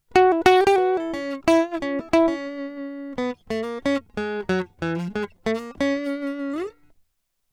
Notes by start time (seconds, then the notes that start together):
0.17 F#4
0.27 E4
0.47 F#4
0.68 G4
0.78 F#4 B4
0.98 E4 A4
1.15 C#4
1.49 E4
1.83 C#4
2.14 E4
2.29 C#4
3.19 B3
3.52 A3
3.65 A#3
3.87 C#4
4.18 G#3
4.50 F#3
4.83 E3
4.97 F3
5.17 G#3
5.47 A3
5.82 C#4